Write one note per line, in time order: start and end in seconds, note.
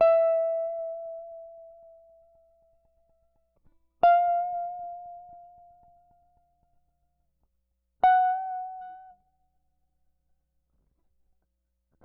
0.00 2.74 E5
4.04 6.39 F5
8.03 9.18 F#5